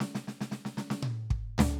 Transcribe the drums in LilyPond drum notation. \new DrumStaff \drummode { \time 4/4 \tempo 4 = 114 sn16 sn16 sn16 sn16 sn16 sn16 sn16 sn16 tommh8 bd8 <tomfh sn>4 | }